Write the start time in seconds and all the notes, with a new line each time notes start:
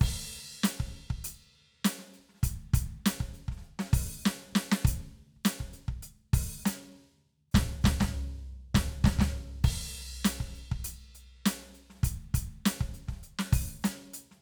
0.01 kick, hi-hat pedal, crash
0.34 closed hi-hat
0.64 closed hi-hat, kick, snare
0.80 kick
0.94 closed hi-hat
1.11 kick, crash
1.15 ride
1.25 closed hi-hat
1.56 closed hi-hat
1.85 closed hi-hat, snare
1.99 snare
2.14 closed hi-hat, snare
2.19 kick
2.29 snare
2.35 snare
2.37 snare
2.44 closed hi-hat, kick
2.74 closed hi-hat, kick
3.06 closed hi-hat, snare
3.21 kick
3.35 closed hi-hat
3.49 kick, snare
3.53 ride
3.58 snare
3.61 snare, closed hi-hat
3.80 snare
3.94 open hi-hat, kick
4.24 snare, hi-hat pedal
4.53 kick, snare
4.72 snare
4.85 closed hi-hat, kick
5.37 kick
5.45 closed hi-hat, snare, hi-hat pedal
5.61 kick
5.74 closed hi-hat
5.89 kick
5.93 ride
6.03 closed hi-hat
6.34 open hi-hat, kick
6.63 closed hi-hat, snare, hi-hat pedal
7.52 kick, snare, floor tom, hi-hat pedal
7.82 kick, snare, floor tom, hi-hat pedal
8.01 kick, snare, floor tom
8.09 hi-hat pedal
8.75 kick, snare, floor tom
9.05 kick, snare, floor tom
9.19 kick, snare, floor tom
9.64 kick, crash
10.25 closed hi-hat, snare
10.41 kick
10.56 closed hi-hat
10.72 kick, crash
10.85 closed hi-hat
11.15 closed hi-hat
11.46 closed hi-hat, snare
11.75 closed hi-hat
11.90 snare
11.96 snare
11.99 snare
12.04 closed hi-hat, kick, snare
12.35 closed hi-hat, kick
12.66 closed hi-hat, snare
12.81 kick
12.95 closed hi-hat
13.08 kick, snare
13.12 snare, crash
13.16 snare
13.24 closed hi-hat
13.39 snare
13.53 open hi-hat, kick
13.82 closed hi-hat, snare, hi-hat pedal
14.08 kick
14.14 closed hi-hat
14.32 snare